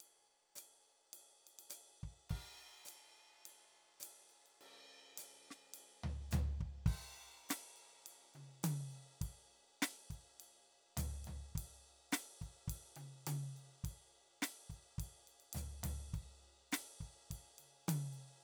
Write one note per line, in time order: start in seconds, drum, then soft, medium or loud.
0.01 ride soft
0.56 hi-hat pedal medium
0.56 ride soft
1.14 ride soft
1.47 ride soft
1.59 ride soft
1.70 hi-hat pedal medium
1.70 ride soft
2.04 kick soft
2.30 kick soft
2.30 crash soft
2.86 hi-hat pedal medium
2.86 ride soft
3.46 ride soft
4.00 hi-hat pedal medium
4.00 ride medium
4.30 ride soft
4.47 ride soft
4.62 ride soft
5.18 hi-hat pedal medium
5.18 ride medium
5.51 snare soft
5.74 ride soft
6.04 floor tom medium
6.32 floor tom medium
6.32 hi-hat pedal medium
6.61 kick soft
6.87 kick medium
6.87 crash soft
7.50 snare medium
7.50 hi-hat pedal medium
7.50 ride medium
7.77 ride soft
8.07 ride soft
8.34 high tom soft
8.34 ride soft
8.64 hi-hat pedal medium
8.64 high tom medium
8.64 ride medium
8.91 ride soft
9.22 kick soft
9.22 ride soft
9.83 snare medium
9.83 hi-hat pedal medium
9.83 ride medium
10.11 kick soft
10.11 ride soft
10.41 ride soft
10.97 floor tom medium
10.97 hi-hat pedal medium
10.97 ride medium
11.25 floor tom soft
11.25 ride soft
11.56 kick soft
11.56 ride medium
12.12 snare loud
12.12 hi-hat pedal medium
12.12 ride medium
12.42 kick soft
12.42 ride soft
12.68 kick soft
12.68 ride medium
12.97 high tom soft
12.97 ride soft
13.27 hi-hat pedal medium
13.27 high tom medium
13.27 ride medium
13.57 ride soft
13.84 kick soft
13.84 ride soft
14.43 snare medium
14.43 hi-hat pedal medium
14.43 ride medium
14.70 kick soft
14.70 ride soft
14.99 kick soft
14.99 ride soft
15.28 ride soft
15.41 ride soft
15.54 floor tom medium
15.54 hi-hat pedal medium
15.54 ride medium
15.84 floor tom medium
15.84 ride medium
16.14 kick soft
16.14 ride soft
16.72 snare medium
16.72 hi-hat pedal medium
16.72 ride medium
17.01 kick soft
17.01 ride soft
17.31 kick soft
17.31 ride soft
17.59 high tom soft
17.59 ride soft
17.89 hi-hat pedal medium
17.89 high tom medium
17.89 ride medium
18.13 ride soft